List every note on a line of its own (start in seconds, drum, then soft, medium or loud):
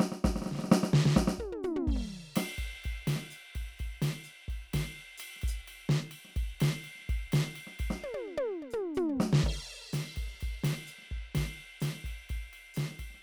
0.01 snare medium
0.13 snare soft
0.25 kick soft
0.25 snare medium
0.31 kick soft
0.37 snare medium
0.43 snare soft
0.47 snare soft
0.52 snare medium
0.56 snare soft
0.60 snare soft
0.65 snare soft
0.69 snare soft
0.72 snare loud
0.84 snare medium
0.94 snare loud
1.06 snare loud
1.17 kick soft
1.17 snare loud
1.17 hi-hat pedal soft
1.28 snare medium
1.39 kick soft
1.39 mid tom medium
1.53 mid tom medium
1.64 floor tom loud
1.64 hi-hat pedal soft
1.76 floor tom loud
1.88 kick soft
1.88 hi-hat pedal soft
1.88 crash soft
1.94 kick soft
1.94 crash medium
2.00 crash soft
2.36 snare medium
2.36 hi-hat pedal medium
2.36 ride loud
2.59 kick soft
2.59 ride soft
2.74 snare soft
2.82 hi-hat pedal soft
2.82 ride soft
2.86 kick soft
3.08 snare medium
3.08 ride medium
3.17 snare soft
3.31 hi-hat pedal medium
3.31 ride soft
3.56 kick soft
3.56 ride medium
3.61 kick soft
3.78 kick soft
3.78 hi-hat pedal soft
3.78 ride soft
3.86 kick soft
4.03 snare medium
4.03 ride medium
4.25 hi-hat pedal medium
4.49 kick soft
4.49 ride soft
4.74 kick soft
4.74 snare medium
4.74 ride medium
4.91 snare soft
5.19 hi-hat pedal loud
5.19 ride medium
5.37 snare soft
5.42 kick soft
5.42 ride medium
5.49 hi-hat pedal loud
5.68 ride medium
5.90 snare loud
5.90 ride soft
6.12 ride medium
6.26 snare soft
6.30 snare soft
6.33 kick soft
6.33 snare soft
6.33 ride medium
6.43 kick soft
6.61 snare loud
6.61 ride loud
6.81 snare soft
6.85 ride soft
6.96 snare soft
7.00 snare soft
7.03 snare soft
7.07 kick soft
7.07 snare soft
7.07 ride soft
7.16 kick soft
7.28 kick soft
7.33 snare loud
7.33 ride medium
7.45 snare soft
7.56 ride medium
7.68 snare soft
7.80 kick soft
7.80 ride medium
7.86 kick soft
7.91 snare medium
8.04 high tom medium
8.15 high tom medium
8.28 high tom soft
8.38 high tom loud
8.63 high tom soft
8.71 hi-hat pedal medium
8.71 mid tom loud
8.96 hi-hat pedal medium
8.96 floor tom loud
9.10 high tom soft
9.17 kick soft
9.17 snare medium
9.34 snare loud
9.44 kick soft
9.44 crash medium
9.50 kick soft
9.94 snare medium
9.94 hi-hat pedal loud
9.94 ride medium
10.17 kick soft
10.17 ride medium
10.23 kick soft
10.28 snare soft
10.32 snare soft
10.35 snare soft
10.41 kick soft
10.41 hi-hat pedal medium
10.41 ride medium
10.49 kick soft
10.65 snare medium
10.65 ride medium
10.73 snare soft
10.88 hi-hat pedal medium
10.99 snare soft
11.03 snare soft
11.12 kick soft
11.17 kick soft
11.36 kick soft
11.36 snare medium
11.36 hi-hat pedal soft
11.36 ride medium
11.43 kick soft
11.49 snare soft
11.81 snare medium
11.81 hi-hat pedal medium
11.81 ride medium
11.95 snare soft
12.05 kick soft
12.05 ride soft
12.10 kick soft
12.29 kick soft
12.29 hi-hat pedal soft
12.29 ride medium
12.36 kick soft
12.54 ride soft
12.75 snare medium
12.75 hi-hat pedal medium
12.75 ride medium
12.92 snare soft
13.00 kick soft
13.00 ride soft
13.11 snare soft
13.15 snare soft